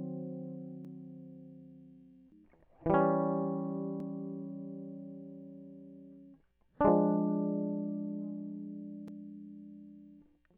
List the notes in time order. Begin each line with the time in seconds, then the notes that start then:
2.87 E3 G3
2.94 C#4
6.81 D4
6.85 F3 G#3